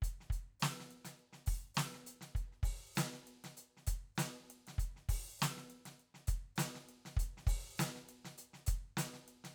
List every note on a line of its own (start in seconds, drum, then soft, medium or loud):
0.02 closed hi-hat medium
0.02 kick soft
0.21 snare soft
0.30 open hi-hat soft
0.30 kick soft
0.60 closed hi-hat medium
0.60 snare loud
0.60 hi-hat pedal medium
0.80 snare soft
0.91 closed hi-hat soft
1.05 closed hi-hat soft
1.05 snare soft
1.19 closed hi-hat soft
1.33 snare soft
1.46 open hi-hat medium
1.46 kick soft
1.75 closed hi-hat medium
1.75 snare medium
1.75 hi-hat pedal medium
1.94 snare soft
2.06 closed hi-hat medium
2.21 snare soft
2.21 closed hi-hat soft
2.35 closed hi-hat soft
2.35 kick soft
2.52 snare soft
2.63 open hi-hat medium
2.63 kick soft
2.95 closed hi-hat medium
2.95 snare loud
2.95 hi-hat pedal medium
3.13 snare soft
3.27 closed hi-hat soft
3.44 snare soft
3.44 closed hi-hat soft
3.57 closed hi-hat soft
3.77 snare soft
3.87 open hi-hat medium
3.87 kick soft
4.15 closed hi-hat medium
4.15 snare medium
4.15 hi-hat pedal soft
4.39 snare soft
4.50 closed hi-hat soft
4.67 snare soft
4.67 closed hi-hat soft
4.78 closed hi-hat medium
4.78 kick soft
4.96 snare soft
5.09 open hi-hat medium
5.09 kick soft
5.39 closed hi-hat medium
5.39 snare loud
5.39 hi-hat pedal medium
5.57 snare soft
5.70 closed hi-hat soft
5.85 snare soft
5.85 closed hi-hat soft
6.00 closed hi-hat soft
6.14 snare soft
6.27 closed hi-hat medium
6.27 kick soft
6.56 closed hi-hat medium
6.56 snare loud
6.56 hi-hat pedal soft
6.75 snare soft
6.89 closed hi-hat soft
7.05 snare soft
7.05 closed hi-hat soft
7.17 closed hi-hat medium
7.17 kick medium
7.37 snare soft
7.47 open hi-hat medium
7.47 kick medium
7.78 closed hi-hat medium
7.78 snare loud
7.78 hi-hat pedal medium
7.95 snare soft
8.09 closed hi-hat soft
8.25 snare soft
8.25 closed hi-hat soft
8.38 closed hi-hat soft
8.53 snare soft
8.67 closed hi-hat medium
8.67 kick medium
8.97 closed hi-hat medium
8.97 snare medium
9.13 snare soft
9.28 closed hi-hat soft
9.44 snare soft
9.44 closed hi-hat soft